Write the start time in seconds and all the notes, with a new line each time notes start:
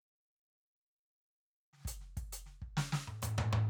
1.73 snare
1.77 snare
1.80 snare
1.85 closed hi-hat, kick
2.01 snare
2.17 kick, closed hi-hat
2.32 closed hi-hat
2.46 snare
2.62 kick
2.77 snare
2.92 snare
3.07 high tom
3.22 hi-hat pedal, high tom
3.38 high tom
3.53 high tom